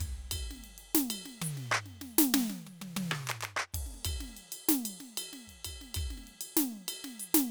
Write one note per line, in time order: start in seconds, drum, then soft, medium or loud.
0.01 kick soft
0.01 ride bell medium
0.09 kick soft
0.22 snare soft
0.32 kick soft
0.32 ride bell loud
0.51 snare soft
0.57 snare soft
0.64 ride medium
0.78 ride medium
0.95 snare loud
1.11 ride bell loud
1.26 snare soft
1.42 hi-hat pedal loud
1.42 mid tom loud
1.58 snare soft
1.72 percussion loud
1.86 snare soft
2.02 snare soft
2.08 hi-hat pedal soft
2.19 snare loud
2.34 snare loud
2.50 snare soft
2.66 hi-hat pedal soft
2.66 high tom soft
2.82 high tom medium
2.97 hi-hat pedal soft
2.97 high tom loud
3.12 cross-stick loud
3.23 hi-hat pedal soft
3.28 percussion loud
3.41 percussion loud
3.57 percussion loud
3.73 kick soft
3.73 hi-hat pedal soft
3.73 ride loud
3.80 kick soft
3.87 snare soft
3.95 snare soft
4.05 kick soft
4.05 ride bell loud
4.13 kick soft
4.21 snare soft
4.30 snare soft
4.37 ride bell soft
4.53 ride bell medium
4.69 snare loud
4.76 hi-hat pedal medium
4.86 ride bell loud
5.01 snare soft
5.18 hi-hat pedal medium
5.18 ride bell loud
5.33 snare soft
5.48 kick soft
5.48 ride soft
5.65 kick soft
5.65 ride bell loud
5.82 snare soft
5.95 kick soft
5.95 ride bell loud
6.04 kick soft
6.11 snare soft
6.18 snare soft
6.24 snare soft
6.24 ride soft
6.29 snare soft
6.41 ride bell medium
6.57 snare loud
6.72 snare soft
6.76 snare soft
6.89 ride bell loud
7.05 snare medium
7.20 hi-hat pedal loud
7.20 ride bell medium
7.35 snare loud